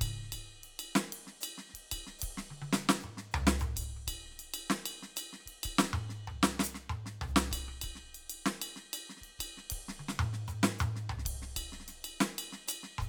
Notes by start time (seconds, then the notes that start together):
0.01 kick, ride bell
0.19 kick
0.24 snare
0.29 snare, ride bell
0.33 kick
0.63 ride
0.79 ride bell
0.95 snare
1.03 snare
1.12 ride
1.27 snare
1.41 hi-hat pedal, ride bell
1.58 snare
1.69 snare
1.74 kick, ride
1.92 kick, ride bell
1.97 kick
2.07 snare
2.19 hi-hat pedal, ride
2.23 kick
2.29 kick
2.37 snare
2.42 kick
2.50 high tom
2.62 closed hi-hat, high tom
2.73 snare
2.89 snare
3.00 hi-hat pedal, mid tom
3.17 snare
3.31 hi-hat pedal, floor tom
3.47 snare
3.59 hi-hat pedal, mid tom
3.70 cross-stick
3.76 kick, ride bell
3.80 hi-hat pedal
3.96 cross-stick
4.07 kick, ride bell
4.25 snare
4.31 snare
4.38 snare, ride bell
4.54 ride bell
4.70 snare
4.86 ride bell
5.03 snare
5.16 hi-hat pedal, ride bell
5.33 snare
5.40 cross-stick
5.46 kick, ride
5.63 kick, ride bell
5.79 snare
5.83 snare
5.93 mid tom
6.09 snare
6.28 floor tom
6.43 snare
6.59 snare, hi-hat pedal
6.75 snare
6.90 mid tom
7.06 snare
7.21 floor tom
7.28 hi-hat pedal
7.36 snare
7.51 kick, hi-hat pedal, ride bell
7.57 kick
7.68 cross-stick
7.82 kick, ride bell
7.95 snare
8.06 snare
8.15 ride bell
8.30 ride bell
8.46 snare
8.62 ride bell
8.76 snare
8.93 hi-hat pedal, ride bell
9.09 snare
9.17 snare
9.21 kick, ride
9.28 snare
9.39 kick, hi-hat pedal, ride bell
9.57 snare
9.70 kick, ride
9.78 kick
9.88 snare
9.99 high tom
10.08 snare
10.15 hi-hat pedal, mid tom
10.33 snare
10.48 hi-hat pedal, mid tom
10.63 snare
10.79 hi-hat pedal, mid tom
10.96 snare
11.09 floor tom
11.19 snare
11.25 kick, hi-hat pedal, ride
11.33 kick
11.37 kick
11.42 snare
11.46 snare
11.56 kick, ride bell
11.72 snare
11.80 snare
11.88 snare, ride bell
12.04 ride bell
12.21 snare
12.38 ride bell
12.53 snare
12.68 hi-hat pedal, ride bell
12.83 snare
12.98 kick, hi-hat pedal, mid tom